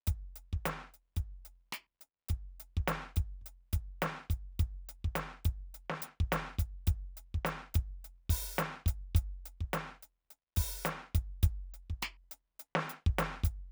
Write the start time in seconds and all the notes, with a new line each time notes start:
0.06 closed hi-hat, kick
0.36 closed hi-hat
0.53 kick
0.65 snare, closed hi-hat
0.94 closed hi-hat
1.16 kick, closed hi-hat
1.45 closed hi-hat
1.72 snare, closed hi-hat
2.01 closed hi-hat
2.29 closed hi-hat, kick
2.60 closed hi-hat
2.77 kick
2.88 snare, closed hi-hat
3.16 kick, closed hi-hat
3.41 kick
3.46 closed hi-hat
3.73 kick, closed hi-hat
4.02 snare, closed hi-hat
4.30 kick, closed hi-hat
4.59 kick, closed hi-hat
4.89 closed hi-hat
5.04 kick
5.15 snare, closed hi-hat
5.45 kick, closed hi-hat
5.74 closed hi-hat
5.90 snare
6.02 closed hi-hat
6.20 kick
6.32 snare, closed hi-hat
6.59 kick, closed hi-hat
6.87 closed hi-hat, kick
7.17 closed hi-hat
7.34 kick
7.45 snare, closed hi-hat
7.74 kick, closed hi-hat
8.04 closed hi-hat
8.30 kick, open hi-hat
8.56 snare, closed hi-hat, hi-hat pedal
8.86 kick, closed hi-hat
9.15 kick, closed hi-hat
9.45 closed hi-hat
9.61 kick
9.73 closed hi-hat, snare
10.03 closed hi-hat
10.30 closed hi-hat
10.56 kick, open hi-hat
10.84 snare, closed hi-hat, hi-hat pedal
10.91 snare
11.15 kick, closed hi-hat
11.43 closed hi-hat, kick
11.74 closed hi-hat
11.90 kick
12.02 snare, closed hi-hat
12.31 closed hi-hat
12.59 closed hi-hat
12.75 snare
12.89 closed hi-hat
13.06 kick
13.18 snare, closed hi-hat
13.44 kick, closed hi-hat